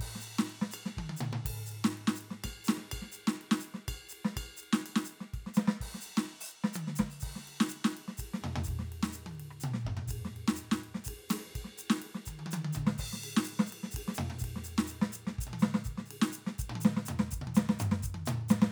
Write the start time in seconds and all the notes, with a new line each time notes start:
0.01 kick, crash
0.06 kick
0.10 kick
0.16 snare
0.21 hi-hat pedal
0.28 ride bell
0.39 snare, hi-hat pedal
0.51 ride
0.62 snare
0.72 hi-hat pedal, ride bell
0.86 snare
0.98 kick, high tom
1.04 kick
1.10 high tom
1.17 hi-hat pedal
1.22 mid tom
1.34 mid tom
1.46 kick, crash
1.52 kick
1.56 kick
1.67 hi-hat pedal
1.73 ride
1.85 snare, hi-hat pedal
1.98 ride
2.08 snare
2.16 hi-hat pedal
2.22 ride
2.31 snare
2.44 kick, snare, ride bell
2.51 kick
2.65 hi-hat pedal, ride
2.69 snare
2.78 snare
2.92 kick, ride bell
2.99 kick, snare
3.13 hi-hat pedal
3.17 ride
3.28 snare
3.35 hi-hat pedal
3.42 ride
3.52 snare
3.61 hi-hat pedal
3.65 ride
3.75 snare
3.89 kick, ride bell
3.95 kick
3.99 kick
4.09 hi-hat pedal
4.13 ride
4.25 snare
4.37 kick, ride bell
4.43 kick
4.46 kick
4.58 hi-hat pedal
4.64 ride
4.74 snare
4.87 ride bell
4.97 snare
5.05 hi-hat pedal
5.10 ride
5.21 snare
5.34 kick, ride bell
5.40 kick
5.44 kick, snare
5.55 snare, hi-hat pedal
5.68 snare
5.81 kick, crash
5.87 kick
5.95 snare
6.02 hi-hat pedal
6.07 ride bell
6.18 snare
6.30 ride bell
6.41 open hi-hat
6.49 hi-hat pedal
6.65 snare
6.74 hi-hat pedal, high tom
6.88 snare
6.96 snare, hi-hat pedal
7.00 kick
7.11 open hi-hat
7.21 kick, hi-hat pedal, crash
7.29 kick
7.33 kick, snare
7.48 ride
7.61 snare
7.69 hi-hat pedal, ride
7.85 snare
7.91 hi-hat pedal
7.98 ride
8.09 snare
8.18 kick, hi-hat pedal, ride
8.25 kick
8.34 snare, hi-hat pedal
8.42 kick, floor tom
8.57 floor tom
8.65 kick, hi-hat pedal
8.69 ride
8.75 kick
8.78 kick, snare
8.85 hi-hat pedal
8.93 ride
9.04 snare
9.13 hi-hat pedal, ride
9.27 high tom
9.33 hi-hat pedal
9.41 ride
9.51 cross-stick
9.61 hi-hat pedal, mid tom
9.75 snare
9.80 hi-hat pedal
9.86 kick, floor tom
9.98 floor tom
10.08 kick, hi-hat pedal, ride
10.16 kick
10.19 kick
10.26 snare
10.37 ride
10.48 snare
10.56 hi-hat pedal
10.61 ride
10.72 snare
10.85 ride
10.95 snare
11.05 kick, hi-hat pedal
11.09 ride
11.13 kick
11.30 snare, hi-hat pedal, ride
11.56 kick, ride bell
11.62 kick, snare
11.79 hi-hat pedal, ride
11.91 snare
11.99 hi-hat pedal, ride
12.16 snare
12.26 kick, hi-hat pedal, high tom
12.40 high tom
12.47 high tom
12.52 hi-hat pedal, high tom
12.66 high tom
12.73 hi-hat pedal, mid tom
12.78 kick
12.83 kick
12.88 snare
12.99 kick, hi-hat pedal, crash
13.09 kick
13.14 snare
13.24 ride
13.37 snare
13.45 hi-hat pedal
13.50 ride
13.60 snare
13.67 kick, hi-hat pedal
13.73 ride
13.84 snare
13.92 kick, hi-hat pedal
13.97 kick, ride
14.05 kick
14.09 snare
14.15 hi-hat pedal
14.19 floor tom
14.31 floor tom
14.40 kick, hi-hat pedal
14.45 kick, ride
14.52 kick
14.57 snare
14.65 hi-hat pedal
14.69 ride
14.79 snare
14.88 hi-hat pedal
14.92 ride
15.03 snare
15.13 hi-hat pedal, ride bell
15.28 snare
15.39 kick, hi-hat pedal
15.46 kick, mid tom, ride
15.50 kick, high tom
15.60 kick, snare, hi-hat pedal
15.75 snare
15.85 kick, hi-hat pedal, ride bell
15.93 kick
15.96 kick, snare
16.07 hi-hat pedal
16.12 ride
16.23 snare
16.33 hi-hat pedal, ride bell
16.48 snare
16.59 kick, hi-hat pedal
16.67 kick, mid tom
16.71 kick
16.76 high tom
16.81 hi-hat pedal
16.86 snare
16.97 snare
17.06 hi-hat pedal, floor tom
17.20 snare
17.32 kick, hi-hat pedal
17.40 kick, mid tom
17.44 kick
17.48 high tom
17.55 snare, hi-hat pedal
17.70 snare
17.80 floor tom, hi-hat pedal
17.92 snare
18.03 kick, hi-hat pedal
18.11 kick
18.14 kick, high tom
18.26 hi-hat pedal, mid tom
18.49 snare, hi-hat pedal
18.63 snare